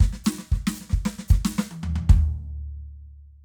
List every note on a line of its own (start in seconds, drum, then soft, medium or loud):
0.01 kick loud
0.01 snare medium
0.13 snare soft
0.25 snare loud
0.25 hi-hat pedal medium
0.39 snare soft
0.52 kick medium
0.52 snare soft
0.68 snare loud
0.75 hi-hat pedal medium
0.81 snare soft
0.90 kick medium
0.90 snare soft
1.06 snare medium
1.19 snare medium
1.29 kick loud
1.29 hi-hat pedal medium
1.33 snare soft
1.46 snare loud
1.59 snare loud
1.72 high tom medium
1.84 floor tom loud
1.96 floor tom loud
2.10 kick loud
2.10 floor tom loud